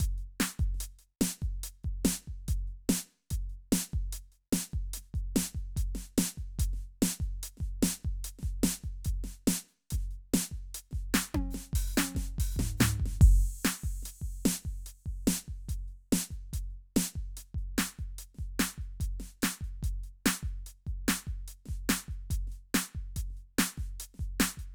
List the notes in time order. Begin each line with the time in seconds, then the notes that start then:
0.00 closed hi-hat, kick
0.18 closed hi-hat
0.40 closed hi-hat, snare
0.59 closed hi-hat, kick
0.74 snare
0.80 closed hi-hat
0.99 closed hi-hat
1.21 closed hi-hat, snare
1.41 kick, closed hi-hat
1.63 closed hi-hat
1.84 kick, closed hi-hat
2.05 closed hi-hat, snare
2.27 kick
2.48 closed hi-hat, kick
2.67 closed hi-hat
2.89 closed hi-hat, snare
3.08 closed hi-hat
3.30 closed hi-hat, kick
3.49 closed hi-hat
3.72 closed hi-hat, snare
3.92 kick, closed hi-hat
4.12 closed hi-hat
4.32 closed hi-hat
4.52 closed hi-hat, snare
4.72 kick, closed hi-hat
4.93 closed hi-hat, snare
5.14 kick, closed hi-hat
5.36 closed hi-hat, snare
5.55 kick, closed hi-hat
5.76 closed hi-hat, kick
5.95 snare, closed hi-hat
6.18 closed hi-hat, snare
6.37 kick, closed hi-hat
6.59 closed hi-hat, kick
6.73 snare, closed hi-hat
7.02 closed hi-hat, snare
7.20 kick, closed hi-hat
7.43 closed hi-hat
7.57 kick, snare
7.64 closed hi-hat
7.82 closed hi-hat, snare
8.04 kick, closed hi-hat
8.24 closed hi-hat
8.39 snare
8.43 kick, closed hi-hat
8.63 closed hi-hat, snare
8.83 kick, closed hi-hat
9.05 closed hi-hat, kick
9.14 kick
9.24 snare, closed hi-hat
9.47 closed hi-hat, snare
9.68 closed hi-hat
9.90 closed hi-hat, kick, snare
10.11 closed hi-hat
10.34 closed hi-hat, snare
10.51 kick, closed hi-hat
10.74 closed hi-hat
10.91 kick, snare, closed hi-hat
11.14 snare
11.34 kick, high tom
11.51 snare, hi-hat pedal
11.73 kick, open hi-hat
11.94 snare, hi-hat pedal, high tom
12.15 kick, snare
12.38 open hi-hat, kick
12.56 kick, snare, floor tom
12.77 snare, floor tom, hi-hat pedal
13.00 kick
13.06 snare
13.21 kick, hi-hat pedal, crash
13.65 closed hi-hat, snare
13.84 closed hi-hat, kick
14.02 closed hi-hat, snare
14.21 kick
14.45 closed hi-hat, snare
14.65 kick, closed hi-hat
14.73 kick
14.86 closed hi-hat
15.06 kick, closed hi-hat
15.27 closed hi-hat, snare
15.48 kick
15.69 closed hi-hat, kick
15.77 kick
15.88 closed hi-hat
16.12 closed hi-hat, snare
16.31 kick, closed hi-hat
16.53 closed hi-hat, kick
16.70 closed hi-hat
16.96 closed hi-hat, snare
17.15 kick
17.37 closed hi-hat, snare
17.54 kick, closed hi-hat
17.78 closed hi-hat, snare
17.99 kick, closed hi-hat
18.18 closed hi-hat
18.34 snare, closed hi-hat
18.39 kick
18.59 closed hi-hat, snare
18.78 kick, closed hi-hat
19.00 closed hi-hat, kick
19.20 closed hi-hat, snare
19.42 closed hi-hat, snare
19.61 kick, closed hi-hat
19.83 closed hi-hat, kick
20.03 closed hi-hat
20.26 closed hi-hat, snare
20.43 kick, closed hi-hat
20.66 closed hi-hat
20.87 kick, closed hi-hat
21.08 closed hi-hat, snare
21.27 kick, closed hi-hat
21.48 closed hi-hat
21.66 kick, snare, closed hi-hat
21.89 closed hi-hat, snare
22.08 kick, closed hi-hat
22.30 closed hi-hat, kick
22.47 snare
22.52 closed hi-hat
22.74 closed hi-hat, snare
22.95 kick
23.16 closed hi-hat, kick
23.28 kick, snare
23.37 closed hi-hat
23.58 closed hi-hat, snare
23.77 kick, snare, closed hi-hat
23.99 closed hi-hat, snare
24.14 snare
24.19 kick, closed hi-hat
24.40 closed hi-hat, snare
24.57 closed hi-hat, kick